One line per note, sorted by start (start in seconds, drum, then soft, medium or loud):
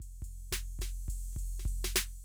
0.00 kick soft
0.00 crash medium
0.22 kick soft
0.22 crash medium
0.52 kick soft
0.52 snare medium
0.52 crash medium
0.79 kick soft
0.79 snare medium
0.79 crash medium
1.08 kick soft
1.08 crash medium
1.32 kick soft
1.32 snare soft
1.38 crash medium
1.59 snare soft
1.65 kick medium
1.65 crash medium
1.84 snare medium
1.96 snare loud